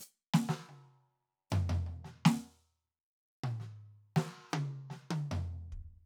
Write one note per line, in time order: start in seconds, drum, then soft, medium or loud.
0.00 hi-hat pedal medium
0.33 snare loud
0.49 snare medium
0.69 high tom soft
1.50 floor tom loud
1.50 hi-hat pedal soft
1.69 floor tom loud
1.86 floor tom soft
2.04 snare soft
2.25 snare loud
3.43 mid tom loud
3.60 snare soft
4.16 snare loud
4.50 hi-hat pedal soft
4.50 high tom loud
4.90 snare medium
5.10 high tom loud
5.31 floor tom loud
5.72 kick soft